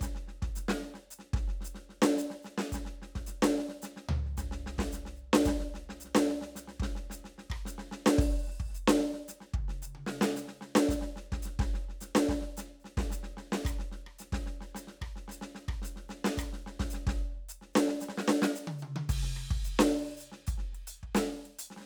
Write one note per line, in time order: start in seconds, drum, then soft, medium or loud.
0.01 kick medium
0.01 snare medium
0.01 hi-hat pedal medium
0.15 snare soft
0.28 snare soft
0.42 kick medium
0.42 snare soft
0.56 snare soft
0.56 hi-hat pedal medium
0.69 snare loud
0.82 snare soft
0.94 snare soft
1.11 hi-hat pedal medium
1.19 snare soft
1.34 kick medium
1.34 snare soft
1.48 snare soft
1.61 snare soft
1.61 hi-hat pedal medium
1.75 snare soft
1.89 snare soft
2.02 snare loud
2.17 snare soft
2.17 hi-hat pedal medium
2.30 snare soft
2.42 snare soft
2.42 hi-hat pedal soft
2.58 snare loud
2.72 kick soft
2.72 snare medium
2.72 hi-hat pedal medium
2.85 snare soft
3.02 snare soft
3.15 kick soft
3.15 snare soft
3.26 snare soft
3.26 hi-hat pedal medium
3.42 snare loud
3.58 snare soft
3.69 snare soft
3.82 snare medium
3.82 hi-hat pedal medium
3.96 snare soft
4.09 floor tom loud
4.25 snare soft
4.37 kick soft
4.37 snare soft
4.37 hi-hat pedal medium
4.51 snare soft
4.66 snare medium
4.78 kick medium
4.78 snare medium
4.92 snare soft
4.92 hi-hat pedal medium
5.05 snare soft
5.16 hi-hat pedal soft
5.33 snare loud
5.45 kick medium
5.45 snare medium
5.45 hi-hat pedal medium
5.60 snare soft
5.74 snare soft
5.89 snare soft
6.00 hi-hat pedal medium
6.05 snare soft
6.15 snare loud
6.29 snare soft
6.42 snare soft
6.56 snare soft
6.56 hi-hat pedal medium
6.68 snare soft
6.80 kick medium
6.80 snare medium
6.95 snare soft
7.10 snare soft
7.10 hi-hat pedal medium
7.24 snare soft
7.38 snare soft
7.50 kick medium
7.50 cross-stick medium
7.65 snare soft
7.65 hi-hat pedal medium
7.78 snare medium
7.92 snare medium
8.06 snare loud
8.19 open hi-hat medium
8.19 kick medium
8.47 snare soft
8.60 kick medium
8.69 snare soft
8.72 snare soft
8.72 hi-hat pedal medium
8.88 snare loud
8.99 snare soft
9.13 snare soft
9.28 snare soft
9.28 hi-hat pedal medium
9.41 snare soft
9.54 kick medium
9.54 high tom soft
9.68 snare soft
9.82 hi-hat pedal medium
9.82 high tom soft
9.95 high tom soft
10.07 snare medium
10.21 snare loud
10.36 snare soft
10.36 hi-hat pedal medium
10.48 snare soft
10.61 snare soft
10.75 snare loud
10.89 kick medium
10.89 snare medium
10.89 hi-hat pedal medium
11.01 snare soft
11.16 snare soft
11.32 kick medium
11.32 snare medium
11.42 snare soft
11.42 hi-hat pedal medium
11.59 kick medium
11.59 snare medium
11.74 snare soft
11.89 snare soft
12.01 snare soft
12.01 hi-hat pedal medium
12.15 snare loud
12.29 kick medium
12.29 snare medium
12.41 snare soft
12.57 snare medium
12.57 hi-hat pedal medium
12.80 hi-hat pedal soft
12.85 snare soft
12.97 kick medium
12.97 snare medium
13.11 snare soft
13.11 hi-hat pedal medium
13.23 snare soft
13.37 snare soft
13.52 snare loud
13.65 kick medium
13.65 cross-stick medium
13.65 hi-hat pedal medium
13.79 snare soft
13.92 snare soft
14.07 cross-stick medium
14.19 snare soft
14.19 hi-hat pedal medium
14.32 kick medium
14.32 snare medium
14.46 snare soft
14.61 snare soft
14.75 snare medium
14.75 hi-hat pedal medium
14.87 snare soft
15.02 kick soft
15.02 cross-stick medium
15.16 snare soft
15.28 snare soft
15.28 hi-hat pedal medium
15.41 snare medium
15.55 snare soft
15.68 kick medium
15.68 cross-stick medium
15.82 snare soft
15.82 hi-hat pedal medium
15.96 snare soft
16.09 snare medium
16.09 hi-hat pedal soft
16.25 snare loud
16.37 kick medium
16.37 cross-stick medium
16.37 hi-hat pedal medium
16.53 snare soft
16.66 snare soft
16.80 kick medium
16.80 snare medium
16.90 snare soft
16.90 hi-hat pedal medium
17.07 kick medium
17.07 snare medium
17.49 hi-hat pedal medium
17.61 snare soft
17.68 snare soft
17.73 snare loud
17.73 hi-hat pedal soft
17.88 snare soft
18.01 snare soft
18.01 hi-hat pedal medium
18.09 snare medium
18.18 snare medium
18.28 snare loud
18.42 snare loud
18.55 hi-hat pedal medium
18.67 high tom medium
18.79 hi-hat pedal soft
18.79 high tom medium
18.96 high tom loud
19.09 kick medium
19.09 hi-hat pedal medium
19.09 crash medium
19.23 snare soft
19.37 cross-stick medium
19.51 kick medium
19.51 closed hi-hat soft
19.65 hi-hat pedal medium
19.79 open hi-hat medium
19.79 snare loud
20.07 open hi-hat soft
20.17 closed hi-hat medium
20.17 hi-hat pedal medium
20.32 snare soft
20.47 closed hi-hat medium
20.47 kick medium
20.58 snare soft
20.72 snare soft
20.72 closed hi-hat soft
20.87 closed hi-hat medium
21.03 kick soft
21.15 closed hi-hat medium
21.15 snare loud
21.45 closed hi-hat soft
21.59 closed hi-hat medium
21.70 snare soft
21.77 snare soft